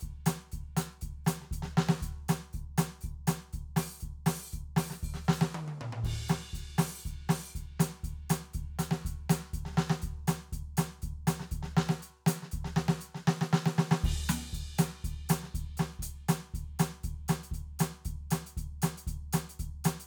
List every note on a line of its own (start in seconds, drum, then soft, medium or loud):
0.01 closed hi-hat soft
0.01 kick medium
0.27 closed hi-hat loud
0.27 snare loud
0.53 closed hi-hat soft
0.53 kick medium
0.78 closed hi-hat loud
0.78 snare loud
1.02 closed hi-hat medium
1.02 kick medium
1.25 closed hi-hat loud
1.25 snare loud
1.25 hi-hat pedal soft
1.43 snare soft
1.52 closed hi-hat medium
1.52 kick medium
1.63 snare medium
1.78 snare loud
1.90 snare loud
2.01 closed hi-hat medium
2.01 kick medium
2.01 hi-hat pedal soft
2.29 closed hi-hat medium
2.29 snare loud
2.54 open hi-hat soft
2.54 kick medium
2.79 closed hi-hat loud
2.79 snare loud
3.02 open hi-hat medium
3.02 kick medium
3.28 closed hi-hat loud
3.28 snare loud
3.54 closed hi-hat soft
3.54 kick medium
3.77 open hi-hat loud
3.77 snare loud
3.99 closed hi-hat medium
3.99 hi-hat pedal soft
4.04 kick medium
4.27 open hi-hat loud
4.27 snare loud
4.53 closed hi-hat soft
4.53 kick medium
4.77 open hi-hat loud
4.77 snare loud
4.91 snare medium
5.04 open hi-hat medium
5.04 kick medium
5.15 snare medium
5.29 snare loud
5.33 hi-hat pedal medium
5.42 snare loud
5.55 high tom loud
5.69 high tom medium
5.82 mid tom loud
5.93 mid tom medium
6.05 kick medium
6.05 crash medium
6.29 closed hi-hat medium
6.29 snare loud
6.54 closed hi-hat soft
6.54 kick medium
6.79 open hi-hat loud
6.79 snare loud
7.04 closed hi-hat soft
7.04 kick medium
7.04 hi-hat pedal soft
7.30 open hi-hat loud
7.30 snare loud
7.56 closed hi-hat medium
7.56 kick medium
7.80 closed hi-hat loud
7.80 snare loud
8.04 closed hi-hat medium
8.04 kick medium
8.31 closed hi-hat loud
8.31 snare loud
8.54 closed hi-hat medium
8.54 kick medium
8.80 closed hi-hat medium
8.80 snare medium
8.92 snare loud
9.06 closed hi-hat medium
9.06 kick medium
9.31 closed hi-hat loud
9.31 snare loud
9.54 closed hi-hat medium
9.54 kick medium
9.66 snare medium
9.72 snare soft
9.78 snare loud
9.91 snare loud
10.03 closed hi-hat medium
10.03 kick medium
10.28 closed hi-hat loud
10.28 snare loud
10.53 closed hi-hat medium
10.53 kick medium
10.78 closed hi-hat loud
10.78 snare loud
11.03 closed hi-hat medium
11.03 kick medium
11.28 closed hi-hat loud
11.28 snare loud
11.41 snare medium
11.52 closed hi-hat medium
11.52 kick medium
11.64 snare medium
11.78 snare loud
11.90 snare loud
12.03 closed hi-hat medium
12.27 closed hi-hat loud
12.27 snare loud
12.43 snare soft
12.52 closed hi-hat medium
12.52 kick medium
12.65 snare medium
12.77 snare loud
12.89 snare loud
13.02 closed hi-hat medium
13.16 snare medium
13.28 snare loud
13.42 snare medium
13.54 snare loud
13.67 snare loud
13.79 snare loud
13.92 snare loud
14.05 kick loud
14.05 crash medium
14.30 closed hi-hat loud
14.30 snare loud
14.54 closed hi-hat medium
14.54 kick medium
14.79 closed hi-hat loud
14.79 snare loud
15.05 closed hi-hat medium
15.05 kick medium
15.30 closed hi-hat loud
15.30 snare loud
15.44 snare soft
15.50 snare soft
15.55 closed hi-hat medium
15.55 kick medium
15.78 closed hi-hat medium
15.78 snare loud
16.00 closed hi-hat loud
16.00 kick medium
16.29 closed hi-hat loud
16.29 snare loud
16.55 closed hi-hat medium
16.55 kick medium
16.80 closed hi-hat loud
16.80 snare loud
17.04 closed hi-hat medium
17.04 kick medium
17.29 closed hi-hat medium
17.29 snare loud
17.44 closed hi-hat soft
17.52 closed hi-hat medium
17.52 kick medium
17.80 closed hi-hat loud
17.80 snare loud
18.06 closed hi-hat medium
18.06 kick medium
18.31 closed hi-hat loud
18.31 snare loud
18.47 closed hi-hat medium
18.58 closed hi-hat medium
18.58 kick medium
18.83 closed hi-hat loud
18.83 snare loud
18.98 closed hi-hat medium
19.08 closed hi-hat medium
19.08 kick medium
19.34 closed hi-hat loud
19.34 snare loud
19.50 closed hi-hat medium
19.61 kick medium
19.85 closed hi-hat loud
19.85 snare loud
20.01 closed hi-hat medium